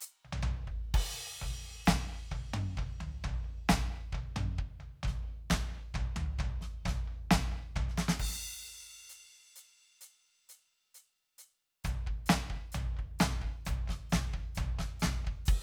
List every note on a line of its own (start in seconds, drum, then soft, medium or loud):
0.01 hi-hat pedal loud
0.25 floor tom soft
0.32 floor tom loud
0.67 kick medium
0.67 floor tom soft
0.94 kick loud
0.94 crash loud
1.13 floor tom soft
1.41 kick medium
1.41 floor tom medium
1.85 kick medium
1.85 snare loud
1.85 floor tom loud
1.85 hi-hat pedal medium
2.31 kick medium
2.31 floor tom medium
2.43 kick soft
2.54 high tom loud
2.77 kick medium
2.77 floor tom medium
2.89 kick soft
3.00 mid tom medium
3.24 kick medium
3.24 floor tom loud
3.44 floor tom soft
3.69 kick medium
3.69 snare loud
3.69 floor tom loud
3.69 hi-hat pedal medium
4.12 kick medium
4.12 floor tom medium
4.22 kick soft
4.36 floor tom loud
4.36 high tom loud
4.58 kick medium
4.58 floor tom soft
4.80 floor tom medium
5.03 kick medium
5.03 snare soft
5.03 floor tom loud
5.23 floor tom soft
5.50 kick medium
5.50 snare loud
5.50 floor tom loud
5.69 floor tom soft
5.94 kick medium
5.94 floor tom loud
6.05 kick soft
6.16 mid tom loud
6.39 kick medium
6.39 floor tom loud
6.61 snare soft
6.85 kick medium
6.85 snare medium
6.85 floor tom loud
7.07 floor tom soft
7.31 kick medium
7.31 snare loud
7.31 floor tom loud
7.52 floor tom medium
7.76 kick medium
7.76 floor tom loud
7.87 kick soft
7.87 snare soft
7.98 snare loud
8.08 snare loud
8.19 kick medium
8.19 crash loud
9.09 hi-hat pedal medium
9.56 hi-hat pedal medium
10.01 hi-hat pedal medium
10.49 hi-hat pedal medium
10.94 hi-hat pedal medium
11.38 hi-hat pedal medium
11.84 kick medium
11.84 snare soft
11.84 floor tom loud
11.84 hi-hat pedal medium
12.06 kick medium
12.06 floor tom medium
12.26 snare loud
12.26 hi-hat pedal medium
12.30 floor tom loud
12.48 kick medium
12.48 floor tom medium
12.72 floor tom loud
12.72 hi-hat pedal medium
12.97 kick medium
12.97 floor tom soft
13.19 snare loud
13.19 floor tom loud
13.19 hi-hat pedal medium
13.41 kick medium
13.41 floor tom soft
13.65 kick medium
13.65 floor tom loud
13.65 hi-hat pedal medium
13.87 kick medium
13.87 snare medium
13.87 floor tom medium
14.09 kick soft
14.09 snare loud
14.09 floor tom loud
14.09 hi-hat pedal soft
14.33 kick medium
14.33 floor tom soft
14.55 kick medium
14.55 floor tom loud
14.55 hi-hat pedal medium
14.79 kick medium
14.79 snare medium
14.79 floor tom medium
14.99 snare loud
14.99 floor tom loud
14.99 hi-hat pedal medium
15.04 kick soft
15.25 kick medium
15.25 floor tom soft
15.45 kick loud
15.45 hi-hat pedal medium
15.45 crash medium